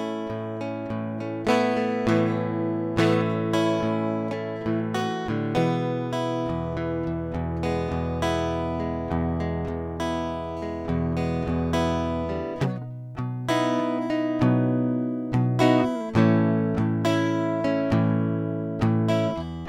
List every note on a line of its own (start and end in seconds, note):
0.00 0.60 C#4
0.00 1.49 E4
0.32 0.89 A2
0.62 1.21 C#4
0.92 2.07 A2
1.13 1.46 A3
1.22 1.47 C#4
1.48 1.79 A3
1.48 3.02 B3
1.48 2.99 E4
1.79 2.10 A3
2.08 2.97 A2
2.08 3.00 E3
2.08 2.99 A3
2.99 3.85 A2
2.99 3.81 E3
2.99 4.34 A3
2.99 3.23 B3
3.23 3.56 C#4
3.55 4.30 C#4
3.55 4.85 E4
3.82 4.64 A2
3.82 4.69 E3
4.33 5.29 A3
4.33 4.61 C#4
4.67 5.09 A2
4.67 5.29 E3
4.96 5.32 F#4
5.30 5.57 A2
5.30 5.59 D3
5.30 5.57 G3
5.56 7.36 B2
5.56 6.76 E3
5.56 7.40 G#3
5.56 6.15 B3
6.14 7.62 B3
6.14 8.22 E4
6.47 7.06 E2
6.78 8.14 E3
7.09 7.36 E2
7.36 7.89 E2
7.36 7.93 B2
7.64 8.24 G#3
7.64 8.24 B3
7.89 9.10 E2
7.95 9.13 B2
8.23 8.81 G#3
8.23 9.98 B3
8.23 10.01 E4
8.82 9.40 G#3
9.13 9.66 E2
9.13 9.67 B2
9.42 10.64 G#3
9.66 10.89 E2
9.66 9.77 B2
10.01 11.16 B3
10.01 11.73 E4
10.64 11.17 G#3
10.90 11.44 E2
10.90 11.51 B2
11.18 11.74 G#3
11.18 11.74 B3
11.44 12.53 E2
11.51 12.30 B2
11.75 12.26 G#3
11.75 12.85 B3
11.75 12.67 E4
12.31 12.57 G3
12.63 13.18 B2
12.63 12.82 F#3
13.20 14.42 B2
13.20 13.87 F#3
13.50 14.02 B3
13.50 14.10 D#4
13.50 15.58 E4
14.12 14.43 B3
14.12 15.63 D#4
14.43 15.34 B2
14.43 15.36 F#3
14.43 15.35 B3
15.34 15.92 B2
15.34 15.98 F#3
15.34 16.18 B3
15.60 15.89 D#4
15.60 16.15 E4
15.60 15.91 F#4
16.17 16.77 A2
16.17 16.79 E3
16.17 16.80 A3
16.17 17.07 C#4
16.21 17.05 E4
16.80 17.92 A2
16.80 17.95 E3
16.80 17.66 A3
17.07 17.63 C#4
17.07 18.90 E4
17.66 17.92 A3
17.66 19.10 C#4
17.92 18.83 A2
17.92 18.84 E3
17.92 18.84 A3
18.84 19.31 A2
18.84 19.37 E3
18.84 19.40 A3
19.10 19.37 C#4
19.10 19.34 E4
19.39 19.67 E2